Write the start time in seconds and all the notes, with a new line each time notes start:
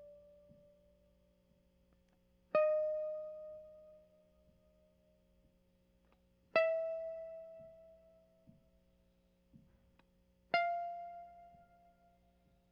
2.55 D#5
6.56 E5
10.54 F5